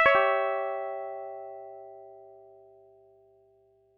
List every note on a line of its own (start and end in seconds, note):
0.00 3.56 E5
0.06 3.20 C#5
0.15 3.98 G4